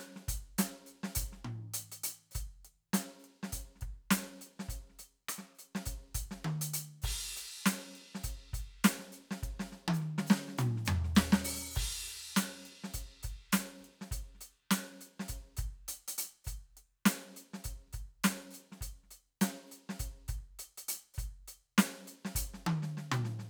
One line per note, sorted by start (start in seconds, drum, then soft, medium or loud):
0.01 closed hi-hat soft
0.17 snare soft
0.29 closed hi-hat loud
0.29 kick soft
0.35 kick soft
0.38 kick soft
0.59 closed hi-hat loud
0.59 snare loud
0.87 closed hi-hat soft
0.87 hi-hat pedal medium
1.04 snare medium
1.16 closed hi-hat loud
1.16 kick soft
1.23 kick soft
1.26 kick soft
1.33 snare soft
1.45 mid tom medium
1.75 closed hi-hat loud
1.93 closed hi-hat medium
2.04 closed hi-hat loud
2.32 closed hi-hat medium
2.32 hi-hat pedal medium
2.36 kick soft
2.42 kick soft
2.66 closed hi-hat medium
2.94 closed hi-hat loud
2.94 snare loud
3.20 hi-hat pedal soft
3.25 closed hi-hat soft
3.44 snare medium
3.53 closed hi-hat medium
3.53 kick soft
3.76 snare soft
3.82 kick soft
3.82 closed hi-hat medium
4.11 closed hi-hat loud
4.11 snare loud
4.23 snare soft
4.42 closed hi-hat medium
4.60 snare medium
4.69 closed hi-hat medium
4.69 kick soft
4.90 snare soft
5.00 closed hi-hat medium
5.00 snare soft
5.29 closed hi-hat loud
5.29 cross-stick medium
5.39 snare soft
5.56 closed hi-hat soft
5.56 hi-hat pedal soft
5.76 snare medium
5.87 closed hi-hat medium
5.87 kick soft
6.15 closed hi-hat loud
6.15 kick soft
6.25 kick soft
6.32 snare medium
6.45 high tom loud
6.62 closed hi-hat loud
6.74 open hi-hat loud
7.03 kick medium
7.03 hi-hat pedal medium
7.03 crash loud
7.11 kick soft
7.14 kick soft
7.37 closed hi-hat medium
7.67 closed hi-hat loud
7.67 snare loud
7.96 closed hi-hat soft
8.16 snare medium
8.25 closed hi-hat medium
8.25 kick soft
8.30 kick soft
8.51 closed hi-hat medium
8.51 kick soft
8.51 snare soft
8.60 kick soft
8.63 kick soft
8.85 closed hi-hat loud
8.85 snare loud
9.00 snare soft
9.13 closed hi-hat soft
9.13 hi-hat pedal medium
9.32 snare medium
9.44 kick soft
9.44 closed hi-hat medium
9.49 kick soft
9.60 snare medium
9.73 snare soft
9.89 high tom loud
9.94 hi-hat pedal medium
10.02 snare soft
10.19 snare medium
10.27 snare loud
10.27 hi-hat pedal medium
10.49 snare soft
10.59 hi-hat pedal loud
10.59 mid tom loud
10.78 snare soft
10.86 hi-hat pedal loud
10.86 floor tom loud
11.05 snare soft
11.16 kick soft
11.16 snare loud
11.16 hi-hat pedal loud
11.33 snare loud
11.45 open hi-hat loud
11.75 kick medium
11.75 hi-hat pedal medium
11.75 crash loud
11.85 kick soft
12.08 closed hi-hat soft
12.37 closed hi-hat loud
12.37 snare loud
12.66 closed hi-hat medium
12.85 snare medium
12.95 closed hi-hat medium
12.95 kick soft
13.24 closed hi-hat medium
13.24 kick soft
13.53 closed hi-hat loud
13.53 snare loud
13.79 kick soft
13.79 hi-hat pedal soft
13.85 closed hi-hat soft
14.02 snare soft
14.12 closed hi-hat medium
14.12 kick soft
14.18 kick soft
14.20 kick soft
14.35 snare soft
14.41 closed hi-hat medium
14.41 snare soft
14.72 closed hi-hat loud
14.72 snare loud
15.02 closed hi-hat soft
15.20 snare medium
15.29 closed hi-hat medium
15.29 kick soft
15.58 closed hi-hat medium
15.58 kick soft
15.65 kick soft
15.69 kick soft
15.89 closed hi-hat loud
16.09 closed hi-hat loud
16.19 closed hi-hat loud
16.45 closed hi-hat medium
16.45 kick soft
16.45 hi-hat pedal medium
16.78 closed hi-hat medium
17.06 closed hi-hat loud
17.06 snare loud
17.37 closed hi-hat soft
17.54 snare soft
17.65 closed hi-hat medium
17.65 kick soft
17.88 snare soft
17.94 closed hi-hat medium
17.94 kick soft
18.25 closed hi-hat loud
18.25 snare loud
18.36 snare soft
18.51 closed hi-hat soft
18.51 hi-hat pedal medium
18.73 snare soft
18.82 closed hi-hat medium
18.82 kick soft
19.04 snare soft
19.12 closed hi-hat soft
19.42 closed hi-hat loud
19.42 snare loud
19.68 hi-hat pedal soft
19.72 closed hi-hat medium
19.90 snare medium
20.00 closed hi-hat medium
20.00 kick soft
20.29 closed hi-hat medium
20.29 kick soft
20.39 kick soft
20.60 closed hi-hat medium
20.78 closed hi-hat medium
20.89 closed hi-hat loud
21.15 kick soft
21.15 hi-hat pedal medium
21.19 closed hi-hat medium
21.25 kick soft
21.27 kick soft
21.49 closed hi-hat medium
21.79 closed hi-hat loud
21.79 snare loud
22.06 closed hi-hat soft
22.06 hi-hat pedal soft
22.26 snare medium
22.36 closed hi-hat loud
22.36 kick soft
22.42 kick soft
22.55 snare soft
22.67 high tom loud
22.83 snare soft
22.98 snare soft
23.12 hi-hat pedal medium
23.12 mid tom loud
23.25 snare soft
23.40 snare soft